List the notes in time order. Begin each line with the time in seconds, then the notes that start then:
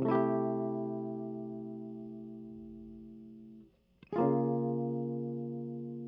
0.00 C3 E3
0.06 A3 E4
0.12 G4 B4
4.13 F4 G#4
4.19 E3 A#3
4.24 C#3